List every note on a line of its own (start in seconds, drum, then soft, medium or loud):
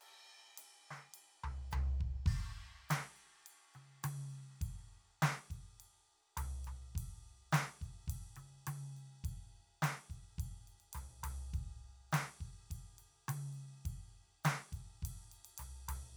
0.01 ride soft
0.58 hi-hat pedal medium
0.58 ride medium
0.91 snare soft
1.14 ride soft
1.44 floor tom medium
1.71 floor tom medium
1.71 hi-hat pedal medium
2.01 kick soft
2.26 kick medium
2.26 crash soft
2.89 snare medium
2.89 hi-hat pedal medium
2.89 ride medium
3.16 ride soft
3.46 ride soft
3.74 high tom soft
3.74 ride soft
4.03 hi-hat pedal medium
4.03 high tom medium
4.03 ride medium
4.30 ride soft
4.61 kick soft
4.61 ride soft
5.22 snare medium
5.22 hi-hat pedal medium
5.22 ride medium
5.50 kick soft
5.50 ride soft
5.80 ride soft
6.37 floor tom medium
6.37 hi-hat pedal medium
6.37 ride medium
6.65 floor tom soft
6.65 ride soft
6.95 kick soft
6.95 ride medium
7.52 snare loud
7.52 hi-hat pedal medium
7.52 ride medium
7.81 kick soft
7.81 ride soft
8.08 kick soft
8.08 ride medium
8.36 high tom soft
8.36 ride soft
8.67 hi-hat pedal medium
8.67 high tom medium
8.67 ride medium
8.97 ride soft
9.24 kick soft
9.24 ride soft
9.82 snare medium
9.82 hi-hat pedal medium
9.82 ride medium
10.10 kick soft
10.10 ride soft
10.38 kick soft
10.38 ride soft
10.67 ride soft
10.80 ride soft
10.93 floor tom medium
10.93 hi-hat pedal medium
10.93 ride medium
11.23 floor tom medium
11.23 ride medium
11.54 kick soft
11.54 ride soft
12.12 snare medium
12.12 hi-hat pedal medium
12.12 ride medium
12.41 kick soft
12.41 ride soft
12.71 kick soft
12.71 ride soft
12.98 high tom soft
12.98 ride soft
13.28 hi-hat pedal medium
13.28 high tom medium
13.28 ride medium
13.53 ride soft
13.85 kick soft
13.85 ride soft
14.44 snare medium
14.44 hi-hat pedal medium
14.44 ride medium
14.72 kick soft
14.72 ride soft
15.02 kick soft
15.02 ride medium
15.32 ride soft
15.45 ride soft
15.58 floor tom soft
15.58 hi-hat pedal medium
15.58 ride medium
15.88 floor tom medium
15.88 ride medium